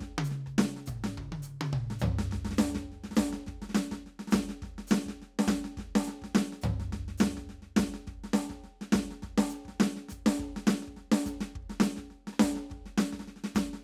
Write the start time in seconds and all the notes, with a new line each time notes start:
0.01 kick, snare
0.08 kick
0.19 high tom
0.25 hi-hat pedal
0.31 snare
0.47 kick, cross-stick
0.59 snare
0.77 snare
0.87 kick, hi-hat pedal, mid tom
0.98 kick
1.04 snare
1.18 kick, high tom
1.25 kick
1.33 high tom
1.43 hi-hat pedal, high tom
1.62 high tom
1.66 hi-hat pedal
1.73 kick, mid tom
1.91 snare
2.00 kick, hi-hat pedal, floor tom
2.19 snare
2.32 kick, snare
2.38 kick
2.42 kick, snare
2.51 snare
2.58 snare, hi-hat pedal
2.75 kick, snare
2.92 snare
3.04 snare
3.12 snare
3.16 kick, snare, hi-hat pedal
3.26 kick
3.33 snare
3.47 kick, snare
3.55 kick
3.62 snare
3.70 snare
3.75 snare, hi-hat pedal
3.91 kick, snare
4.07 snare
4.20 snare
4.28 snare, hi-hat pedal
4.33 kick, snare
4.43 kick
4.49 snare
4.62 kick, snare
4.69 kick
4.79 snare
4.88 snare, hi-hat pedal
5.06 kick, snare
5.22 snare
5.39 snare
5.47 kick, snare, hi-hat pedal
5.54 kick
5.65 snare
5.78 kick, snare
5.85 kick
5.96 snare
6.04 hi-hat pedal
6.08 snare
6.22 kick, snare
6.35 snare
6.53 snare
6.62 kick, hi-hat pedal, floor tom
6.70 kick
6.73 kick
6.80 snare
6.93 kick, snare
7.00 kick
7.09 snare
7.18 snare, hi-hat pedal
7.37 kick, snare
7.50 snare
7.63 snare
7.77 kick, snare, hi-hat pedal
7.85 kick
7.94 snare
8.07 kick, snare
8.14 kick
8.24 snare
8.34 snare, hi-hat pedal
8.50 kick, snare
8.64 snare
8.82 snare
8.93 kick, snare, hi-hat pedal
9.11 snare
9.23 kick, snare
9.30 kick
9.38 snare
9.50 snare, hi-hat pedal
9.66 kick, snare
9.80 snare
9.97 snare
10.09 kick, snare, hi-hat pedal
10.27 snare
10.40 kick, snare
10.46 kick
10.57 snare
10.67 snare, hi-hat pedal
10.83 snare
10.88 kick
10.97 snare
11.12 snare
11.26 kick, snare, hi-hat pedal
11.32 kick
11.41 snare
11.56 kick
11.63 kick
11.70 snare
11.81 snare, hi-hat pedal
11.97 kick, snare
12.11 snare
12.28 snare
12.33 cross-stick
12.40 kick, snare, hi-hat pedal
12.56 snare
12.70 kick, snare
12.78 kick
12.86 snare
12.98 snare, hi-hat pedal
13.13 kick, snare
13.20 snare
13.28 snare
13.37 snare
13.44 snare
13.55 kick, snare, hi-hat pedal
13.61 kick
13.74 snare